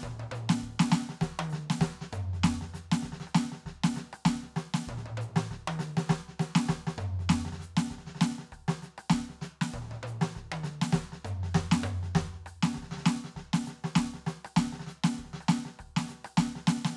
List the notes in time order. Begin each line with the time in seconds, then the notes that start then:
0.01 kick, snare, mid tom
0.09 snare
0.20 mid tom
0.32 hi-hat pedal, mid tom
0.38 mid tom
0.50 snare
0.64 kick
0.80 snare
0.93 snare, hi-hat pedal
1.10 snare
1.22 kick, snare
1.40 high tom
1.51 snare, hi-hat pedal
1.71 snare
1.81 kick, snare
2.02 snare
2.13 floor tom, hi-hat pedal
2.34 snare
2.44 kick, snare
2.50 kick
2.62 snare
2.75 snare, hi-hat pedal
2.93 snare
3.04 kick, snare
3.13 snare
3.21 snare
3.28 cross-stick
3.36 snare, hi-hat pedal
3.53 snare
3.67 kick, snare
3.85 snare
3.95 snare, hi-hat pedal
4.14 cross-stick
4.26 kick, snare
4.43 snare
4.57 snare, hi-hat pedal
4.75 snare
4.88 kick, mid tom
4.98 snare
5.07 mid tom
5.18 hi-hat pedal, mid tom
5.37 snare
5.52 kick, snare
5.68 high tom
5.80 snare, hi-hat pedal
5.98 snare
6.10 kick, snare
6.29 snare
6.40 snare, hi-hat pedal
6.56 snare
6.70 kick, snare
6.88 snare
6.99 floor tom, hi-hat pedal
7.20 snare
7.30 kick, snare
7.46 snare
7.53 snare
7.60 snare, hi-hat pedal
7.78 snare
7.91 kick, snare
7.99 snare
8.06 snare
8.07 snare
8.16 snare
8.22 snare, hi-hat pedal
8.39 snare
8.53 kick, cross-stick
8.69 snare
8.83 snare, hi-hat pedal
8.99 cross-stick
9.11 kick, snare
9.30 snare
9.42 snare, hi-hat pedal
9.62 snare
9.73 kick, snare, mid tom
9.83 kick, snare
9.88 snare
9.92 snare, mid tom
10.04 mid tom
10.08 hi-hat pedal, mid tom
10.22 snare
10.36 kick, snare
10.53 high tom
10.64 snare, hi-hat pedal
10.82 snare
10.94 kick, snare
11.00 kick
11.13 snare
11.26 floor tom, hi-hat pedal
11.44 snare
11.55 kick, snare
11.61 kick
11.72 snare
11.84 hi-hat pedal, floor tom
12.04 snare
12.16 kick, snare
12.22 kick
12.34 snare
12.47 cross-stick, hi-hat pedal
12.64 snare
12.75 kick, snare
12.83 snare
12.90 snare
12.92 snare
12.98 snare
13.03 snare
13.07 snare, hi-hat pedal
13.25 snare
13.37 kick, snare
13.54 snare
13.66 snare, hi-hat pedal
13.85 snare
13.96 kick, snare
14.15 snare
14.27 snare, hi-hat pedal
14.46 cross-stick
14.57 kick, snare
14.73 snare
14.80 snare
14.88 snare, hi-hat pedal
15.05 snare
15.17 kick, snare
15.26 snare
15.32 snare
15.34 snare
15.41 cross-stick
15.45 cross-stick
15.49 snare, hi-hat pedal
15.66 snare
15.80 kick, cross-stick
15.97 snare
16.09 snare, hi-hat pedal
16.26 cross-stick
16.38 kick, snare
16.56 snare
16.68 snare, hi-hat pedal
16.86 snare